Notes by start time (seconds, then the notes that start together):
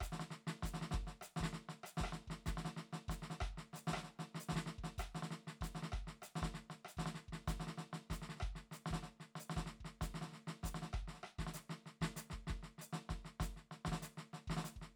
0.01 kick, cross-stick, hi-hat pedal
0.13 snare
0.20 snare
0.31 snare
0.48 snare
0.63 kick, snare, hi-hat pedal
0.74 snare
0.82 snare
0.92 kick, snare
1.03 kick
1.07 snare
1.22 cross-stick, hi-hat pedal
1.37 snare
1.41 kick, snare
1.53 snare
1.69 snare
1.84 cross-stick, hi-hat pedal
1.98 kick, snare
2.04 cross-stick
2.08 cross-stick
2.13 snare
2.28 kick, snare
2.46 kick, snare, hi-hat pedal
2.55 kick, snare
2.65 snare
2.77 snare
2.93 snare
3.09 kick, snare, hi-hat pedal
3.23 snare
3.31 snare
3.41 kick, cross-stick
3.49 kick
3.58 snare
3.74 snare, hi-hat pedal
3.88 snare
3.92 kick, cross-stick
3.98 snare
4.04 snare
4.20 snare
4.35 snare
4.40 hi-hat pedal
4.49 kick, snare
4.56 snare
4.67 snare
4.79 kick
4.84 snare
4.99 kick, cross-stick, hi-hat pedal
5.15 snare
5.23 snare
5.31 snare
5.48 snare
5.62 kick, snare, hi-hat pedal
5.75 snare
5.83 snare
5.93 kick, cross-stick
6.08 snare
6.23 cross-stick, hi-hat pedal
6.36 snare
6.43 kick, snare
6.55 snare
6.70 snare
6.85 cross-stick, hi-hat pedal
6.98 kick, snare
7.06 snare
7.15 snare
7.29 kick
7.33 snare
7.48 kick, snare, hi-hat pedal
7.60 snare
7.68 snare
7.78 snare
7.93 snare
8.11 kick, snare, hi-hat pedal
8.22 snare
8.30 snare
8.36 snare
8.41 kick, cross-stick
8.51 kick
8.56 snare
8.72 snare, hi-hat pedal
8.86 snare
8.91 kick, snare
9.03 snare
9.20 snare
9.36 snare
9.40 hi-hat pedal
9.50 snare
9.57 kick, snare
9.67 snare
9.81 kick
9.85 snare
10.02 kick, snare, hi-hat pedal
10.15 snare
10.22 snare
10.28 snare
10.33 snare
10.48 snare
10.64 kick, snare, hi-hat pedal
10.75 snare
10.83 snare
10.94 kick, cross-stick
11.03 kick
11.08 snare
11.13 snare
11.18 snare
11.24 cross-stick
11.39 kick, snare
11.47 snare
11.54 snare, hi-hat pedal
11.70 snare
11.86 snare
12.02 kick, snare
12.17 snare, hi-hat pedal
12.31 kick, snare
12.48 kick, snare
12.63 snare
12.79 snare, hi-hat pedal
12.93 snare
13.10 kick, snare
13.25 snare
13.40 kick, snare, hi-hat pedal
13.57 snare
13.72 snare
13.85 kick, snare
13.92 snare
14.03 snare, hi-hat pedal
14.18 snare
14.34 snare
14.48 kick, snare
14.57 snare
14.65 snare, hi-hat pedal
14.77 kick
14.82 snare